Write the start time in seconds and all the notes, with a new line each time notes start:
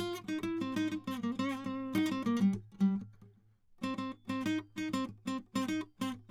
0.00 F4
0.29 D#4
0.44 E4
0.62 C4
0.77 D#4
1.08 C4
1.24 B3
1.40 C4
1.67 C4
1.96 D#4
2.13 C4
2.27 A#3
2.42 G3
2.81 G3
3.84 C4
3.99 C4
4.30 C4
4.94 C4
5.28 C4
5.56 C4